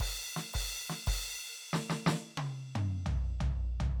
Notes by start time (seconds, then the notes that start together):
0.05 kick, crash
0.36 snare
0.53 kick, crash
0.89 snare
1.06 kick, crash
1.73 snare
1.90 snare
2.06 snare
2.13 snare
2.37 high tom
2.75 mid tom
3.06 floor tom
3.40 floor tom
3.80 floor tom